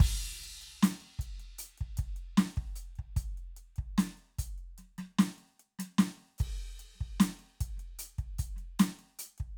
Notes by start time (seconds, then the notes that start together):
0.01 kick, crash
0.44 closed hi-hat
0.62 closed hi-hat
0.84 closed hi-hat, snare
1.01 closed hi-hat
1.20 kick, closed hi-hat
1.39 snare, closed hi-hat
1.59 closed hi-hat
1.79 kick, closed hi-hat
1.98 kick, closed hi-hat
2.17 closed hi-hat
2.38 closed hi-hat, snare
2.57 kick, closed hi-hat
2.77 closed hi-hat
2.96 kick, closed hi-hat
3.17 closed hi-hat, kick
3.38 closed hi-hat
3.57 closed hi-hat
3.77 kick, closed hi-hat
3.99 closed hi-hat, snare
4.18 closed hi-hat
4.39 closed hi-hat, kick
4.59 closed hi-hat
4.79 snare, closed hi-hat
4.99 snare, closed hi-hat
5.20 closed hi-hat, snare
5.39 closed hi-hat
5.60 closed hi-hat
5.80 snare, closed hi-hat
5.99 closed hi-hat, snare
6.39 kick, hi-hat pedal, crash
6.59 closed hi-hat
6.80 closed hi-hat
6.96 snare
7.01 kick
7.21 closed hi-hat, snare
7.40 closed hi-hat
7.61 kick, closed hi-hat
7.78 snare, closed hi-hat
8.00 closed hi-hat
8.19 kick, closed hi-hat
8.39 closed hi-hat, kick
8.57 snare, closed hi-hat
8.80 closed hi-hat, snare
9.00 closed hi-hat
9.20 closed hi-hat
9.39 kick, closed hi-hat